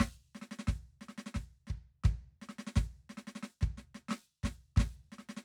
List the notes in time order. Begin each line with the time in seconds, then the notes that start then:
0.03 snare
0.35 snare
0.41 snare
0.51 snare
0.59 snare
0.67 kick, snare
1.01 snare
1.08 snare
1.18 snare
1.26 snare
1.34 kick, snare
1.67 kick, snare
2.04 kick, snare
2.42 snare
2.49 snare
2.59 snare
2.67 snare
2.76 kick, snare
3.09 snare
3.17 snare
3.27 snare
3.35 snare
3.43 snare
3.61 kick, snare
3.77 snare
3.95 snare
4.08 snare
4.11 snare
4.43 kick, snare
4.45 snare
4.76 kick, snare
4.79 snare
5.12 snare
5.18 snare
5.29 snare
5.37 snare